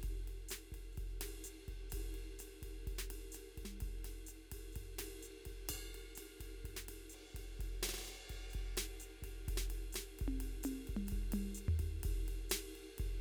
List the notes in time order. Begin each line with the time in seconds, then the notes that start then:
0.01 kick, snare, ride
0.10 kick
0.28 ride
0.49 snare, hi-hat pedal, ride
0.72 kick, ride
0.78 kick
0.93 hi-hat pedal
0.98 kick, ride
1.04 kick
1.10 snare
1.21 snare, ride
1.44 hi-hat pedal, ride
1.69 kick, ride
1.74 kick
1.90 kick, snare, hi-hat pedal, ride
2.15 ride
2.39 snare, hi-hat pedal, ride
2.63 kick, ride
2.68 kick
2.88 kick, ride
2.93 kick
2.99 snare
3.11 ride
3.21 snare
3.32 snare, hi-hat pedal, ride
3.58 kick, ride
3.63 kick, snare, mid tom
3.81 kick, ride
3.88 kick
4.04 snare, ride
4.06 snare
4.27 hi-hat pedal, ride
4.52 kick, ride
4.58 kick
4.73 kick, hi-hat pedal, ride
4.82 kick
4.99 snare, ride
5.23 hi-hat pedal, ride
5.46 kick, ride
5.52 kick
5.69 kick, hi-hat pedal, ride bell
5.76 kick
5.95 ride
6.16 snare, hi-hat pedal, ride
6.41 kick, ride
6.46 kick
6.65 kick, ride
6.70 kick
6.77 snare
6.89 ride
7.10 hi-hat pedal, ride
7.35 kick, ride
7.40 kick
7.54 hi-hat pedal
7.60 kick, ride
7.65 kick
7.83 snare, ride
7.89 snare
7.94 snare
7.98 snare
8.02 snare, hi-hat pedal
8.05 snare, ride
8.08 snare
8.12 snare
8.15 snare
8.30 kick, ride
8.36 kick
8.51 hi-hat pedal, ride
8.55 kick
8.61 kick
8.78 snare, ride
9.00 hi-hat pedal, ride
9.09 snare
9.23 kick, snare, ride
9.28 kick, snare
9.49 kick, ride
9.55 kick, snare
9.71 ride
9.93 snare, hi-hat pedal, ride
10.19 kick, ride
10.28 kick, high tom
10.41 ride
10.64 hi-hat pedal, high tom, ride
10.88 kick, ride
10.95 kick, mid tom
11.07 hi-hat pedal, ride
11.13 kick
11.19 kick
11.33 mid tom, ride
11.55 hi-hat pedal, ride
11.69 floor tom
11.80 kick, ride
11.86 kick
12.04 kick, ride
12.12 kick
12.29 ride
12.50 snare, hi-hat pedal, ride
12.76 ride
12.81 snare
12.86 snare
12.99 kick, ride
13.06 kick